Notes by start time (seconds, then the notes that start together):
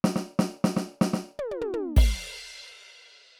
0.04 snare
0.16 snare
0.39 snare
0.64 snare
0.77 snare
1.01 snare
1.13 snare
1.39 high tom
1.51 high tom
1.61 mid tom
1.73 mid tom
1.96 kick, ride, crash